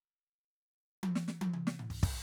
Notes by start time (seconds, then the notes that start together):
1.03 high tom
1.16 snare
1.28 snare
1.41 high tom
1.54 mid tom
1.67 snare
1.79 floor tom
1.90 kick, crash
2.03 kick, crash